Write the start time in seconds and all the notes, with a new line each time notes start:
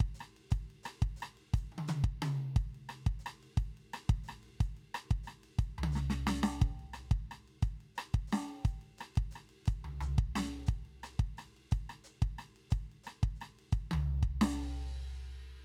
0.01 kick, ride
0.15 hi-hat pedal
0.20 cross-stick, ride
0.37 ride
0.51 kick, hi-hat pedal, ride
0.71 ride
0.84 cross-stick, hi-hat pedal, ride
1.03 kick, ride
1.17 hi-hat pedal
1.21 cross-stick, ride
1.38 ride
1.54 kick, hi-hat pedal, ride
1.73 high tom
1.79 high tom
1.88 hi-hat pedal, high tom
2.05 kick
2.23 hi-hat pedal, high tom
2.57 kick, hi-hat pedal, ride
2.75 ride
2.90 cross-stick, ride
3.07 kick, ride
3.20 hi-hat pedal
3.27 cross-stick, ride
3.44 ride
3.58 kick, hi-hat pedal, ride
3.78 ride
3.94 cross-stick, ride
4.10 kick, ride
4.24 hi-hat pedal
4.29 cross-stick, ride
4.44 ride
4.61 kick, hi-hat pedal, ride
4.78 ride
4.95 cross-stick, ride
5.11 kick, ride
5.24 hi-hat pedal
5.28 cross-stick, ride
5.44 ride
5.59 kick, hi-hat pedal, ride
5.79 floor tom
5.84 high tom
5.93 snare, hi-hat pedal
6.11 snare
6.27 snare, hi-hat pedal
6.44 snare
6.61 kick, hi-hat pedal, ride
6.80 ride
6.94 cross-stick, hi-hat pedal, ride
7.12 kick
7.32 cross-stick, ride
7.48 ride
7.63 kick, hi-hat pedal, ride
7.81 ride
7.96 cross-stick, hi-hat pedal, ride
8.15 kick, ride
8.28 hi-hat pedal
8.33 snare, ride
8.49 ride
8.66 kick, hi-hat pedal, ride
8.82 ride
8.99 cross-stick, hi-hat pedal, ride
9.16 kick, ride
9.32 hi-hat pedal, ride
9.36 cross-stick
9.50 ride
9.66 kick, hi-hat pedal, ride
9.85 floor tom, high tom
10.01 floor tom, hi-hat pedal, high tom
10.19 kick
10.36 snare, ride
10.67 kick, hi-hat pedal, ride
10.86 ride
11.04 cross-stick, hi-hat pedal, ride
11.20 kick, ride
11.38 cross-stick, hi-hat pedal, ride
11.57 ride
11.72 kick, hi-hat pedal, ride
11.90 cross-stick, ride
12.05 hi-hat pedal, ride
12.23 kick, ride
12.39 cross-stick, hi-hat pedal, ride
12.57 ride
12.71 kick, hi-hat pedal, ride
12.92 ride
13.04 cross-stick, hi-hat pedal, ride
13.24 kick, ride
13.36 hi-hat pedal
13.42 cross-stick, ride
13.60 ride
13.73 kick, hi-hat pedal, ride
13.92 floor tom, high tom
14.23 kick
14.42 snare, crash